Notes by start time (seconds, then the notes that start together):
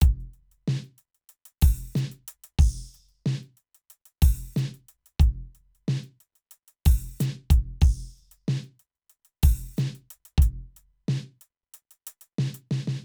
0.01 kick, closed hi-hat
0.21 closed hi-hat
0.34 closed hi-hat
0.52 closed hi-hat
0.68 snare
0.84 closed hi-hat
0.98 closed hi-hat
1.15 closed hi-hat
1.29 closed hi-hat
1.46 closed hi-hat
1.62 open hi-hat, kick
1.96 snare, hi-hat pedal
2.12 closed hi-hat
2.28 closed hi-hat
2.44 closed hi-hat
2.59 kick, crash
2.94 closed hi-hat
3.09 closed hi-hat
3.26 snare
3.43 closed hi-hat
3.57 closed hi-hat
3.75 closed hi-hat
3.90 closed hi-hat
4.06 closed hi-hat
4.22 open hi-hat, kick
4.57 snare, hi-hat pedal
4.74 closed hi-hat
4.89 closed hi-hat
5.06 closed hi-hat
5.20 closed hi-hat, kick
5.55 closed hi-hat
5.75 closed hi-hat
5.88 snare
6.04 closed hi-hat
6.21 closed hi-hat
6.36 closed hi-hat
6.51 closed hi-hat
6.68 closed hi-hat
6.86 open hi-hat, kick
7.20 closed hi-hat, snare, hi-hat pedal
7.50 kick, closed hi-hat
7.81 kick, hi-hat pedal, crash
8.17 closed hi-hat
8.32 closed hi-hat
8.48 snare
8.64 closed hi-hat
8.80 closed hi-hat
8.96 closed hi-hat
9.10 closed hi-hat
9.25 closed hi-hat
9.43 open hi-hat, kick
9.77 snare, hi-hat pedal
9.95 closed hi-hat
10.11 closed hi-hat
10.25 closed hi-hat
10.38 kick
10.42 closed hi-hat
10.77 closed hi-hat
11.09 snare
11.41 closed hi-hat
11.74 closed hi-hat
11.91 closed hi-hat
12.07 closed hi-hat
12.21 closed hi-hat
12.39 snare
12.54 closed hi-hat
12.71 snare
12.88 snare